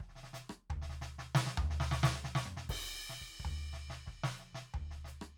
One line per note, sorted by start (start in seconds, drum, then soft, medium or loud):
0.01 kick soft
0.01 snare soft
0.10 snare soft
0.16 snare soft
0.24 snare soft
0.32 snare soft
0.32 hi-hat pedal medium
0.50 kick soft
0.50 cross-stick medium
0.71 kick soft
0.71 floor tom medium
0.83 snare soft
0.90 snare soft
1.02 snare medium
1.02 hi-hat pedal soft
1.19 snare medium
1.36 snare loud
1.47 snare medium
1.58 floor tom loud
1.71 snare soft
1.81 snare medium
1.92 snare medium
2.04 snare loud
2.15 snare soft
2.25 snare medium
2.36 snare loud
2.46 mid tom medium
2.58 snare medium
2.70 kick medium
2.70 crash loud
3.10 snare soft
3.22 kick soft
3.41 kick soft
3.46 floor tom loud
3.72 snare soft
3.72 hi-hat pedal soft
3.89 kick soft
3.89 snare medium
4.07 kick soft
4.07 snare soft
4.24 snare medium
4.38 snare soft
4.38 hi-hat pedal soft
4.54 kick soft
4.54 snare medium
4.75 kick soft
4.75 floor tom medium
4.92 snare soft
5.05 snare soft
5.05 hi-hat pedal medium
5.22 kick soft
5.22 cross-stick medium